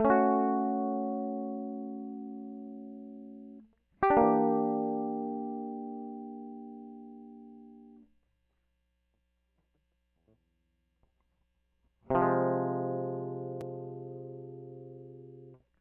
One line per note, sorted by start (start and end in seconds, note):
0.00 3.68 A3
0.05 3.62 C#4
0.10 3.62 F#4
4.03 8.04 G4
4.10 8.11 D4
4.17 8.06 A#3
4.23 6.21 E3
12.11 15.59 C3
12.11 15.56 F3
12.22 15.53 G#3